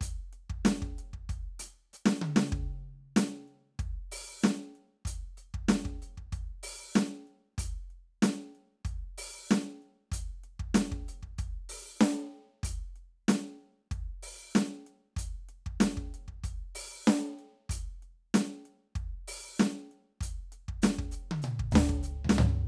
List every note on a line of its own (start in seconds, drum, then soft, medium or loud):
0.01 closed hi-hat loud
0.01 kick medium
0.33 closed hi-hat soft
0.50 kick medium
0.65 closed hi-hat loud
0.65 snare loud
0.82 kick medium
0.99 closed hi-hat medium
1.13 kick soft
1.29 closed hi-hat soft
1.29 kick medium
1.60 open hi-hat loud
1.93 hi-hat pedal medium
2.06 snare loud
2.22 high tom loud
2.36 snare loud
2.52 kick medium
3.16 closed hi-hat loud
3.16 snare loud
3.48 closed hi-hat soft
3.79 kick medium
3.79 closed hi-hat medium
4.12 open hi-hat loud
4.42 closed hi-hat medium
4.42 snare loud
4.42 hi-hat pedal medium
4.75 closed hi-hat soft
5.05 closed hi-hat loud
5.05 kick medium
5.37 closed hi-hat soft
5.54 kick medium
5.69 closed hi-hat loud
5.69 snare loud
5.85 kick medium
6.02 closed hi-hat soft
6.18 kick soft
6.33 closed hi-hat soft
6.33 kick medium
6.63 open hi-hat loud
6.96 closed hi-hat medium
6.96 snare loud
6.96 hi-hat pedal medium
7.27 closed hi-hat soft
7.58 closed hi-hat loud
7.58 kick medium
7.90 closed hi-hat soft
8.23 closed hi-hat loud
8.23 snare loud
8.55 closed hi-hat soft
8.85 closed hi-hat medium
8.85 kick medium
9.18 open hi-hat loud
9.51 snare loud
9.51 hi-hat pedal medium
9.51 open hi-hat medium
9.82 closed hi-hat soft
10.12 closed hi-hat loud
10.12 kick medium
10.44 closed hi-hat soft
10.60 kick medium
10.75 closed hi-hat loud
10.75 snare loud
10.92 kick medium
11.08 closed hi-hat medium
11.23 kick soft
11.38 closed hi-hat medium
11.38 kick medium
11.69 open hi-hat loud
12.01 snare loud
12.01 hi-hat pedal medium
12.63 closed hi-hat loud
12.63 kick medium
12.96 closed hi-hat soft
13.28 closed hi-hat loud
13.28 snare loud
13.91 kick medium
13.91 closed hi-hat medium
14.23 open hi-hat loud
14.55 closed hi-hat medium
14.55 snare loud
14.55 hi-hat pedal medium
14.87 closed hi-hat soft
15.17 closed hi-hat loud
15.17 kick medium
15.49 closed hi-hat soft
15.66 kick medium
15.80 closed hi-hat loud
15.80 snare loud
15.97 kick medium
16.14 closed hi-hat medium
16.28 kick soft
16.44 closed hi-hat medium
16.44 kick medium
16.75 open hi-hat loud
17.07 snare loud
17.07 hi-hat pedal medium
17.39 closed hi-hat soft
17.69 closed hi-hat loud
17.69 kick medium
18.03 closed hi-hat soft
18.34 closed hi-hat loud
18.34 snare loud
18.66 closed hi-hat soft
18.96 kick medium
18.96 closed hi-hat soft
19.28 open hi-hat loud
19.59 closed hi-hat medium
19.59 snare loud
19.59 hi-hat pedal medium
19.91 closed hi-hat soft
20.21 closed hi-hat loud
20.21 kick medium
20.52 closed hi-hat medium
20.68 kick medium
20.82 open hi-hat loud
20.82 snare loud
20.82 hi-hat pedal medium
20.99 kick medium
21.12 hi-hat pedal medium
21.31 high tom loud
21.42 hi-hat pedal medium
21.42 mid tom loud
21.59 kick medium
21.72 floor tom loud
21.72 hi-hat pedal medium
21.76 snare loud
21.89 kick medium
21.96 kick soft
22.03 hi-hat pedal medium
22.25 floor tom medium
22.29 snare loud
22.29 hi-hat pedal medium
22.39 floor tom loud